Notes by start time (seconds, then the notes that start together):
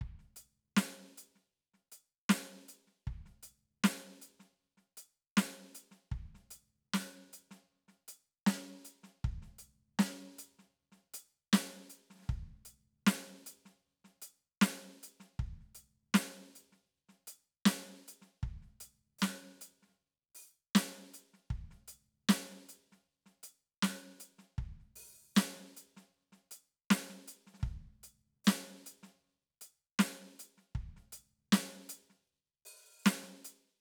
0.01 kick
0.19 snare
0.36 closed hi-hat
0.76 snare
1.17 closed hi-hat
1.35 snare
1.74 snare
1.92 closed hi-hat
2.29 snare
2.68 closed hi-hat
2.87 snare
2.91 snare
3.07 kick
3.25 snare
3.43 closed hi-hat
3.84 snare
4.21 closed hi-hat
4.39 snare
4.77 snare
4.97 closed hi-hat
5.37 snare
5.75 closed hi-hat
5.91 snare
6.11 kick
6.34 snare
6.50 closed hi-hat
6.93 snare
7.00 closed hi-hat
7.33 closed hi-hat
7.51 snare
7.88 snare
8.08 closed hi-hat
8.46 snare
8.85 closed hi-hat
9.03 snare
9.24 kick
9.42 snare
9.58 closed hi-hat
9.99 snare
10.38 closed hi-hat
10.58 snare
10.92 snare
10.97 snare
11.14 closed hi-hat
11.53 snare
11.90 closed hi-hat
12.10 snare
12.15 snare
12.18 snare
12.22 snare
12.25 kick, snare
12.65 closed hi-hat
13.06 snare
13.26 snare
13.46 closed hi-hat
13.65 snare
14.04 snare
14.22 closed hi-hat
14.61 snare
15.03 closed hi-hat
15.20 snare
15.39 kick
15.60 snare
15.75 closed hi-hat
16.14 snare
16.55 closed hi-hat
16.72 snare
17.08 snare
17.27 closed hi-hat
17.65 snare
18.08 closed hi-hat
18.21 snare
18.43 kick
18.62 snare
18.66 snare
18.80 closed hi-hat
19.18 snare, hi-hat pedal
19.43 snare
19.51 snare
19.61 closed hi-hat
19.82 snare
19.85 snare
19.88 snare
20.35 open hi-hat
20.75 snare, hi-hat pedal
20.95 snare
21.05 snare
21.14 closed hi-hat
21.33 snare
21.39 snare
21.50 kick
21.71 snare
21.88 open hi-hat
22.29 snare, hi-hat pedal
22.51 snare
22.69 closed hi-hat
22.92 snare
23.26 snare
23.43 closed hi-hat
23.82 snare
23.92 snare
24.20 closed hi-hat
24.38 snare
24.58 kick, closed hi-hat
24.69 kick
24.79 snare
24.96 open hi-hat
25.35 snare, hi-hat pedal
25.56 snare
25.63 snare
25.76 closed hi-hat
25.96 snare
26.14 closed hi-hat
26.32 snare
26.51 closed hi-hat
26.90 snare
27.09 snare
27.28 closed hi-hat
27.46 snare
27.54 snare
27.59 kick, snare
27.65 snare
27.71 kick
28.03 closed hi-hat
28.44 snare, hi-hat pedal
28.86 closed hi-hat
29.03 snare
29.61 closed hi-hat
29.99 snare
30.21 snare
30.27 snare
30.39 closed hi-hat
30.57 snare
30.75 kick
30.96 snare
31.12 closed hi-hat
31.52 snare
31.58 snare
31.76 snare
31.81 snare
31.89 closed hi-hat
32.09 snare
32.27 closed hi-hat
32.65 open hi-hat
33.05 snare, hi-hat pedal
33.23 snare
33.29 snare
33.44 closed hi-hat